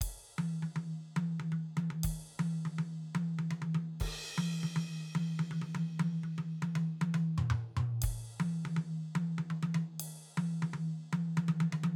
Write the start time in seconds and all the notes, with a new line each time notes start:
0.01 kick, ride
0.38 high tom
0.62 high tom
0.76 high tom
1.16 high tom
1.39 high tom
1.52 high tom
1.77 high tom
1.90 high tom
2.03 kick, ride
2.39 high tom
2.65 high tom
2.78 high tom
3.15 high tom
3.39 high tom
3.51 high tom
3.62 high tom
3.74 high tom
4.00 kick, ride
4.38 high tom
4.63 high tom
4.76 high tom
5.15 high tom
5.39 high tom
5.51 high tom
5.61 open hi-hat, high tom
5.74 high tom
5.99 high tom
6.23 high tom
6.38 high tom
6.62 high tom
6.75 high tom
7.01 high tom
7.14 high tom
7.38 mid tom
7.50 mid tom
7.77 mid tom
8.02 kick, ride
8.40 high tom
8.65 high tom
8.76 high tom
9.15 high tom
9.38 high tom
9.50 high tom
9.62 high tom
9.74 high tom
9.99 ride
10.37 high tom
10.62 high tom
10.73 high tom
11.12 high tom
11.37 high tom
11.48 high tom
11.60 high tom
11.72 high tom
11.83 high tom